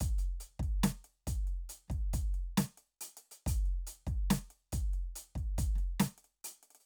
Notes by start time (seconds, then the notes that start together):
0.01 closed hi-hat, kick
0.19 closed hi-hat
0.41 closed hi-hat
0.60 kick, closed hi-hat
0.84 closed hi-hat, snare
1.05 closed hi-hat
1.28 closed hi-hat, kick
1.48 closed hi-hat
1.70 closed hi-hat
1.88 kick, snare, closed hi-hat
2.14 closed hi-hat, kick
2.35 closed hi-hat
2.58 closed hi-hat, snare
2.78 closed hi-hat
3.01 closed hi-hat
3.17 closed hi-hat
3.32 closed hi-hat
3.47 closed hi-hat, kick
3.66 closed hi-hat
3.87 closed hi-hat
4.07 kick, closed hi-hat
4.31 closed hi-hat, snare
4.51 closed hi-hat
4.73 closed hi-hat, kick
4.94 closed hi-hat
5.16 closed hi-hat
5.36 kick, closed hi-hat
5.59 closed hi-hat, kick
5.76 snare, closed hi-hat
6.00 closed hi-hat, snare
6.18 closed hi-hat
6.25 closed hi-hat
6.45 closed hi-hat
6.63 closed hi-hat
6.71 closed hi-hat
6.75 closed hi-hat
6.81 closed hi-hat